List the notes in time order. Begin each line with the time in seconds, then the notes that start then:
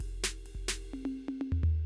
0.00 kick, ride
0.24 snare, ride
0.46 ride
0.55 kick
0.68 snare, ride
0.93 high tom
1.05 high tom
1.28 high tom
1.41 high tom
1.52 floor tom
1.63 floor tom